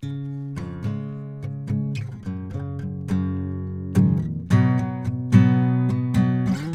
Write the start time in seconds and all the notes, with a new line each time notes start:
0.01 C#3 C#4
0.57 F2 C#3
0.85 C#3 G#3 C#4
1.44 C#3 G#3 C#4
1.69 C#3 G#3 C#4
2.27 F#2
2.51 F#2
2.56 C#3
2.80 F#2 C#3
3.09 F#2 C#3
3.96 F#2 C#3 D#3
4.19 F2 A#2
4.52 B2 F#3 B3
4.80 B2
5.06 B2
5.33 B2 F#3 B3
5.90 B2
6.15 B2 F#3 B3